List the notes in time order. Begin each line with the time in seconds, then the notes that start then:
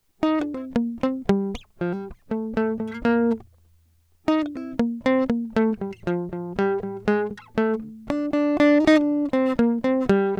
0.23 D#4
0.40 D4
0.55 C4
0.77 A#3
1.04 C4
1.30 G3
1.82 F3
1.94 G3
2.32 A3
2.58 A3
2.79 A3
3.06 A#3
3.16 A#3
4.29 D#4
4.43 D4
4.56 C4
4.80 A#3
5.07 C4
5.30 A#3
5.57 A3
5.82 G3
6.08 F3
6.34 F3
6.59 G3
6.85 G3
7.08 G#3
7.58 A3
8.11 D4
8.34 D4
8.61 D4
8.88 D#4
8.98 D4
9.34 C4
9.60 A#3
9.85 C4
10.10 G3